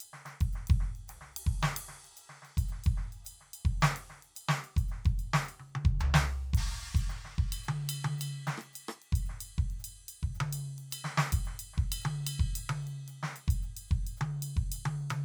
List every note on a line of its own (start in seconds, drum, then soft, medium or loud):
0.01 hi-hat pedal medium
0.01 ride bell medium
0.14 snare soft
0.26 snare soft
0.26 ride soft
0.41 kick medium
0.41 ride medium
0.53 snare soft
0.53 hi-hat pedal medium
0.68 kick medium
0.68 ride medium
0.81 snare soft
0.96 ride soft
1.08 snare soft
1.08 hi-hat pedal medium
1.08 ride medium
1.08 floor tom soft
1.22 snare soft
1.33 hi-hat pedal soft
1.33 ride loud
1.47 kick medium
1.62 snare medium
1.62 hi-hat pedal medium
1.77 ride loud
1.89 snare soft
2.04 snare soft
2.04 ride soft
2.17 hi-hat pedal medium
2.17 ride bell soft
2.30 snare soft
2.43 snare soft
2.43 ride soft
2.58 kick medium
2.58 ride bell medium
2.69 hi-hat pedal medium
2.73 snare soft
2.84 kick medium
2.84 ride bell soft
2.98 snare soft
3.13 ride bell soft
3.25 hi-hat pedal medium
3.25 ride bell medium
3.41 snare soft
3.54 ride bell medium
3.65 kick medium
3.81 snare loud
3.81 hi-hat pedal medium
3.97 ride medium
4.10 snare soft
4.23 ride soft
4.36 hi-hat pedal medium
4.36 ride bell medium
4.49 snare loud
4.65 ride bell soft
4.77 kick medium
4.77 ride bell soft
4.89 snare soft
4.89 hi-hat pedal medium
5.05 kick medium
5.05 ride soft
5.20 ride bell soft
5.34 snare loud
5.45 hi-hat pedal medium
5.49 ride bell soft
5.60 high tom soft
5.68 hi-hat pedal soft
5.76 high tom loud
5.85 kick medium
6.00 floor tom loud
6.00 hi-hat pedal medium
6.15 snare loud
6.54 kick medium
6.54 hi-hat pedal medium
6.54 ride medium
6.54 crash medium
6.84 ride soft
6.95 kick medium
6.95 ride bell soft
7.10 snare soft
7.10 hi-hat pedal medium
7.25 snare soft
7.35 kick medium
7.35 hi-hat pedal soft
7.53 ride bell loud
7.64 hi-hat pedal medium
7.69 high tom loud
7.90 ride bell loud
8.05 high tom loud
8.19 hi-hat pedal medium
8.19 ride bell loud
8.48 snare medium
8.48 ride bell soft
8.58 cross-stick medium
8.58 ride soft
8.74 hi-hat pedal medium
8.74 ride bell medium
8.89 cross-stick medium
9.02 ride soft
9.13 kick medium
9.13 ride bell medium
9.26 snare soft
9.26 hi-hat pedal medium
9.41 ride bell medium
9.59 kick medium
9.71 ride soft
9.80 hi-hat pedal medium
9.85 ride bell medium
10.09 ride bell medium
10.23 kick medium
10.35 hi-hat pedal medium
10.41 high tom loud
10.53 ride bell medium
10.79 ride soft
10.91 hi-hat pedal medium
10.91 ride bell loud
11.05 snare medium
11.18 snare loud
11.33 kick medium
11.33 ride bell medium
11.45 snare soft
11.45 hi-hat pedal medium
11.60 ride bell medium
11.74 snare soft
11.78 kick medium
11.92 ride bell loud
12.01 hi-hat pedal medium
12.06 high tom loud
12.27 ride bell loud
12.40 kick medium
12.56 hi-hat pedal medium
12.56 ride bell medium
12.70 high tom loud
12.82 hi-hat pedal soft
12.88 ride soft
13.08 hi-hat pedal medium
13.08 ride soft
13.23 snare medium
13.33 hi-hat pedal soft
13.33 ride bell soft
13.48 kick medium
13.48 ride bell medium
13.63 hi-hat pedal medium
13.77 ride bell medium
13.88 kick medium
13.88 hi-hat pedal soft
14.07 ride bell soft
14.17 hi-hat pedal medium
14.21 high tom loud
14.43 ride bell medium
14.57 kick medium
14.72 hi-hat pedal medium
14.72 ride bell medium
14.86 high tom loud
14.99 hi-hat pedal soft
15.11 high tom loud
15.11 ride soft